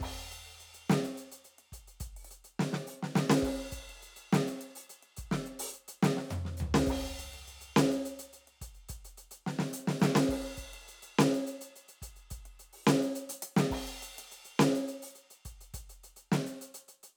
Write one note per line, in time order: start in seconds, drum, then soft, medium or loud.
0.01 kick soft
0.01 crash medium
0.07 kick soft
0.21 closed hi-hat soft
0.32 closed hi-hat medium
0.60 closed hi-hat soft
0.74 closed hi-hat soft
0.90 snare loud
1.04 closed hi-hat medium
1.18 closed hi-hat medium
1.32 closed hi-hat medium
1.45 closed hi-hat soft
1.59 closed hi-hat soft
1.72 closed hi-hat medium
1.72 kick soft
1.88 closed hi-hat soft
2.00 closed hi-hat medium
2.00 kick soft
2.17 open hi-hat soft
2.25 open hi-hat medium
2.31 closed hi-hat medium
2.45 closed hi-hat medium
2.60 snare loud
2.73 snare medium
2.87 open hi-hat medium
2.92 hi-hat pedal soft
3.03 snare medium
3.16 snare loud
3.30 snare loud
3.37 hi-hat pedal medium
3.43 kick soft
3.43 crash medium
3.72 closed hi-hat medium
3.72 kick soft
3.90 closed hi-hat soft
4.03 closed hi-hat soft
4.16 closed hi-hat medium
4.33 snare loud
4.48 closed hi-hat medium
4.61 closed hi-hat medium
4.76 open hi-hat medium
4.90 closed hi-hat medium
5.03 closed hi-hat soft
5.17 closed hi-hat medium
5.17 kick soft
5.32 snare medium
5.46 open hi-hat medium
5.46 hi-hat pedal soft
5.59 open hi-hat loud
5.74 closed hi-hat medium
5.88 closed hi-hat medium
6.03 snare loud
6.17 snare soft
6.30 hi-hat pedal medium
6.30 mid tom loud
6.45 snare soft
6.57 floor tom loud
6.57 hi-hat pedal medium
6.74 snare loud
6.86 kick medium
6.86 hi-hat pedal medium
6.86 crash loud
6.94 kick soft
6.97 kick soft
7.19 closed hi-hat medium
7.34 closed hi-hat soft
7.48 closed hi-hat soft
7.61 closed hi-hat medium
7.77 snare loud
7.92 closed hi-hat medium
8.06 closed hi-hat medium
8.19 closed hi-hat medium
8.33 closed hi-hat soft
8.48 closed hi-hat soft
8.62 closed hi-hat medium
8.62 kick soft
8.75 closed hi-hat soft
8.89 closed hi-hat medium
8.89 kick soft
9.05 closed hi-hat medium
9.18 closed hi-hat medium
9.31 closed hi-hat medium
9.47 snare medium
9.59 snare medium
9.68 hi-hat pedal soft
9.73 closed hi-hat loud
9.88 snare loud
10.00 snare loud
10.00 hi-hat pedal soft
10.16 snare loud
10.23 hi-hat pedal soft
10.29 kick soft
10.29 crash medium
10.35 kick soft
10.57 closed hi-hat medium
10.57 kick soft
10.74 closed hi-hat soft
10.81 closed hi-hat soft
10.88 closed hi-hat medium
11.03 closed hi-hat medium
11.19 snare loud
11.34 closed hi-hat soft
11.47 closed hi-hat medium
11.61 closed hi-hat medium
11.76 closed hi-hat soft
11.89 closed hi-hat medium
12.02 closed hi-hat medium
12.02 kick soft
12.16 closed hi-hat soft
12.31 closed hi-hat medium
12.31 kick soft
12.46 closed hi-hat soft
12.60 closed hi-hat medium
12.73 open hi-hat medium
12.87 snare loud
13.00 closed hi-hat medium
13.00 hi-hat pedal soft
13.16 closed hi-hat medium
13.30 closed hi-hat loud
13.43 closed hi-hat loud
13.57 snare loud
13.71 kick soft
13.71 crash loud
13.87 closed hi-hat medium
14.02 closed hi-hat medium
14.19 closed hi-hat medium
14.32 closed hi-hat medium
14.45 closed hi-hat medium
14.60 snare loud
14.75 closed hi-hat medium
14.88 closed hi-hat medium
15.02 open hi-hat medium
15.15 closed hi-hat soft
15.31 closed hi-hat soft
15.45 closed hi-hat medium
15.45 kick soft
15.61 closed hi-hat soft
15.74 closed hi-hat medium
15.74 kick soft
15.90 closed hi-hat medium
16.04 closed hi-hat soft
16.17 closed hi-hat medium
16.32 snare loud
16.47 closed hi-hat medium
16.62 closed hi-hat medium
16.74 closed hi-hat medium
16.88 closed hi-hat medium
17.03 closed hi-hat medium